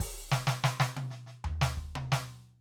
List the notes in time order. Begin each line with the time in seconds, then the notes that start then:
0.00 open hi-hat, kick
0.31 snare
0.47 snare
0.64 snare
0.80 snare
0.96 high tom
1.10 snare
1.26 snare
1.44 floor tom
1.61 snare
1.77 kick
1.95 high tom
2.12 snare